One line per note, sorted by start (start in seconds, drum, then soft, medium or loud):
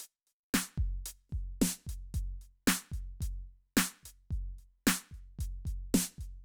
0.05 closed hi-hat medium
0.27 closed hi-hat soft
0.54 closed hi-hat medium
0.54 snare loud
0.77 kick medium
1.06 closed hi-hat loud
1.29 kick soft
1.29 snare soft
1.29 closed hi-hat soft
1.61 snare loud
1.86 closed hi-hat medium
1.86 kick soft
2.14 closed hi-hat medium
2.14 kick soft
2.41 closed hi-hat soft
2.67 snare loud
2.92 kick soft
2.92 closed hi-hat soft
3.20 closed hi-hat medium
3.20 kick soft
3.77 snare loud
4.03 closed hi-hat medium
4.03 kick soft
4.30 kick soft
4.30 closed hi-hat soft
4.57 kick soft
4.57 closed hi-hat soft
4.87 snare loud
5.11 kick soft
5.11 closed hi-hat soft
5.39 closed hi-hat medium
5.39 kick soft
5.65 closed hi-hat soft
5.65 kick soft
5.94 snare loud
6.18 kick soft
6.18 closed hi-hat soft